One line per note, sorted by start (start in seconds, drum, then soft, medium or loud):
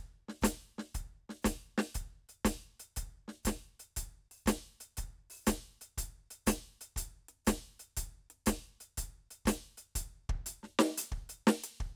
0.29 snare soft
0.42 closed hi-hat loud
0.42 kick medium
0.42 snare loud
0.42 hi-hat pedal soft
0.79 snare medium
0.95 closed hi-hat medium
0.95 kick medium
1.30 snare soft
1.43 closed hi-hat medium
1.43 kick medium
1.43 snare loud
1.43 hi-hat pedal soft
1.79 snare medium
1.95 closed hi-hat medium
1.95 kick medium
2.30 open hi-hat soft
2.46 closed hi-hat medium
2.46 kick medium
2.46 snare loud
2.80 closed hi-hat medium
2.97 closed hi-hat medium
2.97 kick medium
3.29 snare soft
3.44 closed hi-hat loud
3.44 kick medium
3.44 snare medium
3.44 hi-hat pedal soft
3.80 closed hi-hat medium
3.97 closed hi-hat loud
3.97 kick soft
4.32 open hi-hat soft
4.47 closed hi-hat loud
4.47 kick medium
4.47 snare loud
4.81 closed hi-hat medium
4.98 closed hi-hat medium
4.98 kick medium
5.31 open hi-hat medium
5.45 closed hi-hat loud
5.45 kick medium
5.45 snare loud
5.45 hi-hat pedal soft
5.82 closed hi-hat medium
5.98 closed hi-hat loud
5.98 kick medium
6.31 open hi-hat medium
6.47 open hi-hat loud
6.47 kick medium
6.47 snare loud
6.47 hi-hat pedal soft
6.82 closed hi-hat medium
6.97 closed hi-hat loud
6.97 kick medium
7.29 closed hi-hat soft
7.46 closed hi-hat loud
7.46 kick medium
7.46 snare loud
7.46 hi-hat pedal soft
7.80 closed hi-hat medium
7.97 closed hi-hat loud
7.97 kick medium
8.31 closed hi-hat soft
8.47 open hi-hat loud
8.47 kick medium
8.47 snare loud
8.47 hi-hat pedal medium
8.81 closed hi-hat soft
8.98 closed hi-hat loud
8.98 kick soft
9.31 closed hi-hat medium
9.46 open hi-hat loud
9.46 kick medium
9.46 snare loud
9.46 hi-hat pedal soft
9.78 closed hi-hat soft
9.96 closed hi-hat loud
9.96 kick medium
10.30 kick medium
10.47 closed hi-hat medium
10.64 snare soft
10.80 snare loud
10.98 closed hi-hat loud
11.12 kick medium
11.30 closed hi-hat medium
11.48 snare loud
11.65 closed hi-hat loud
11.81 kick medium